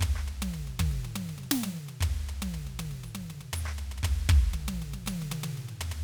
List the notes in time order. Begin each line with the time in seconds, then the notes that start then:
0.01 kick, floor tom
0.15 percussion
0.27 floor tom
0.42 high tom
0.53 floor tom
0.67 high tom
0.79 kick, mid tom
0.91 high tom
1.04 hi-hat pedal, mid tom
1.15 high tom
1.29 mid tom
1.38 high tom
1.43 high tom
1.51 snare, hi-hat pedal
1.63 high tom
1.76 mid tom
1.88 mid tom
2.00 kick, floor tom
2.29 floor tom
2.42 high tom
2.51 floor tom, hi-hat pedal
2.66 high tom
2.79 hi-hat pedal, mid tom
2.91 high tom
3.03 hi-hat pedal, mid tom
3.15 high tom
3.30 mid tom
3.41 mid tom
3.53 floor tom, hi-hat pedal
3.65 percussion
3.71 floor tom
3.78 floor tom
3.91 floor tom
3.98 floor tom
4.03 kick, floor tom
4.29 kick, floor tom
4.53 mid tom
4.68 high tom
4.82 mid tom
4.93 high tom
5.06 hi-hat pedal, high tom
5.21 high tom
5.31 mid tom
5.43 mid tom
5.57 mid tom
5.68 mid tom
5.81 floor tom
5.91 floor tom